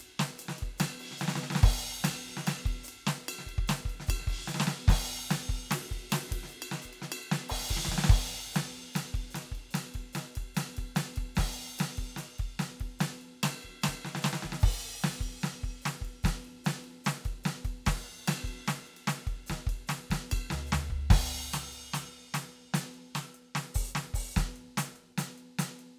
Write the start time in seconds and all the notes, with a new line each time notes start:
0.01 ride bell
0.20 snare
0.39 hi-hat pedal, ride bell
0.49 snare
0.58 kick, ride bell
0.78 snare, hi-hat pedal, ride bell
1.00 ride
1.11 snare
1.18 snare, hi-hat pedal
1.28 snare
1.36 snare
1.43 snare
1.50 snare
1.55 snare
1.63 kick, crash
2.03 snare, hi-hat pedal, ride bell
2.24 ride
2.37 snare
2.46 snare, hi-hat pedal, ride bell
2.66 kick, ride
2.84 hi-hat pedal
2.88 ride bell
3.07 snare
3.29 hi-hat pedal, ride bell
3.39 snare
3.47 kick, ride bell
3.58 kick
3.68 snare, hi-hat pedal, ride bell
3.85 kick
3.90 ride bell
4.00 snare
4.07 kick, hi-hat pedal, ride bell
4.20 snare
4.27 kick, ride
4.38 snare
4.48 snare, hi-hat pedal
4.55 snare
4.60 snare
4.67 snare
4.88 kick, snare, crash
5.08 ride
5.30 snare, hi-hat pedal, ride bell
5.49 kick, ride
5.70 snare, hi-hat pedal, ride
5.91 kick, ride bell
6.10 snare, hi-hat pedal, ride
6.29 kick, snare, ride
6.43 snare
6.48 hi-hat pedal
6.53 ride bell
6.62 ride bell
6.72 snare
6.82 kick, hi-hat pedal, ride
6.93 ride bell
7.02 snare
7.12 hi-hat pedal, ride bell
7.23 ride
7.32 snare
7.49 kick, crash
7.60 snare
7.67 kick, hi-hat pedal, ride
7.77 snare
7.85 kick, snare
7.92 snare
7.98 snare
8.04 snare
8.10 kick, crash
8.54 snare, hi-hat pedal, ride bell
8.94 snare, hi-hat pedal, ride bell
9.14 kick, ride
9.31 hi-hat pedal
9.35 snare, ride bell
9.52 kick, ride
9.71 snare, hi-hat pedal
9.76 ride bell
9.94 kick, ride bell
10.13 snare, hi-hat pedal, ride bell
10.36 kick, ride bell
10.55 snare, hi-hat pedal, ride bell
10.77 kick, ride bell
10.95 snare, hi-hat pedal, ride bell
11.16 kick, ride bell
11.35 kick, snare, hi-hat pedal, crash
11.77 snare, hi-hat pedal, ride bell
11.98 kick, ride bell
12.16 snare, hi-hat pedal, ride bell
12.39 kick, ride bell
12.59 snare, hi-hat pedal, ride bell
12.80 kick, ride
12.99 snare, hi-hat pedal, ride bell
13.22 ride
13.43 snare, hi-hat pedal, ride bell
13.63 kick, ride bell
13.82 snare, hi-hat pedal, ride bell
13.89 kick
14.05 snare
14.15 snare
14.22 snare, hi-hat pedal
14.33 snare
14.43 kick, snare
14.52 snare
14.60 kick, hi-hat pedal, crash
15.01 snare, hi-hat pedal, ride bell
15.21 kick, ride
15.41 snare, hi-hat pedal, ride bell
15.64 kick, ride
15.82 snare, hi-hat pedal
15.86 ride bell
16.02 kick, ride
16.23 kick, snare, hi-hat pedal, ride
16.45 ride
16.64 snare, hi-hat pedal, ride
16.84 ride
17.04 snare, hi-hat pedal
17.25 kick, ride bell
17.44 snare, hi-hat pedal
17.65 kick, ride bell
17.86 kick, snare, hi-hat pedal, crash
18.27 snare, hi-hat pedal, ride bell
18.44 kick, ride bell
18.67 snare, hi-hat pedal, ride bell
18.87 ride bell
18.97 ride bell
19.07 snare, hi-hat pedal, ride bell
19.27 kick, ride bell
19.47 kick, snare, hi-hat pedal, ride bell
19.67 kick, ride bell
19.88 snare, hi-hat pedal, ride bell
20.10 kick, snare, ride bell
20.30 kick, hi-hat pedal, ride bell
20.50 snare, floor tom
20.67 hi-hat pedal
20.72 snare, floor tom
20.90 kick
21.10 kick, snare, crash
21.16 hi-hat pedal
21.53 closed hi-hat, snare
21.72 closed hi-hat
21.94 closed hi-hat, snare
22.13 closed hi-hat
22.34 closed hi-hat, snare
22.53 closed hi-hat
22.74 closed hi-hat, snare
22.94 closed hi-hat
23.15 closed hi-hat, snare
23.35 closed hi-hat
23.55 snare
23.75 open hi-hat, kick
23.90 hi-hat pedal
23.95 snare
24.14 open hi-hat, kick
24.34 closed hi-hat, kick, snare, hi-hat pedal
24.56 closed hi-hat
24.77 closed hi-hat, snare
24.96 closed hi-hat
25.18 closed hi-hat, snare
25.38 closed hi-hat
25.58 closed hi-hat, snare, hi-hat pedal
25.79 closed hi-hat